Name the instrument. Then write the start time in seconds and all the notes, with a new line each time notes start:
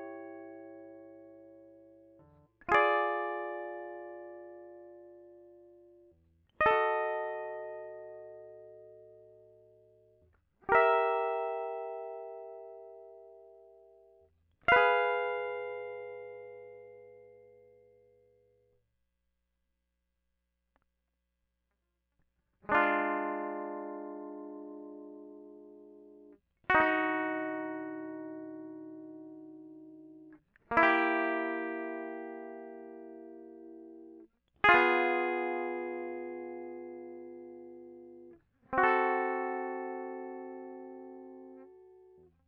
electric guitar
2.69 F4 G#4
2.75 D5
6.61 D#5
6.66 A4
6.71 F#4
10.69 G4 A#4
10.75 E5
14.69 B4 F5
14.77 G#4
22.70 G#3 D4
22.75 F4
26.70 F#4
26.75 D#4
30.72 A#3
30.78 E4
30.83 G4
34.65 G#4
34.69 F4
34.75 B3
38.74 C4
38.78 F#4
38.84 A4